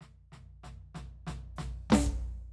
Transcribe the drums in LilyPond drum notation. \new DrumStaff \drummode { \time 4/4 \tempo 4 = 95 <sn tomfh>8 <sn tomfh>8 <sn tomfh>8 <sn tomfh>8 <sn tomfh>8 <hhp sn tomfh>8 <tomfh sn>16 bd8. | }